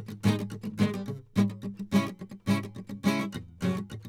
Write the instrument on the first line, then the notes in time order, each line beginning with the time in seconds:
acoustic guitar
0.27 D3 G#3 D#4
0.81 D3 G#3
1.07 C#3
1.39 G3 E4
1.94 C#3 G#3 C#4 E4
2.49 C#3 G#3 C#4 E4
3.06 C#3 G#3 C#4 E4
3.21 E4
3.34 E2
3.62 F#2 C3 F#3
3.91 E2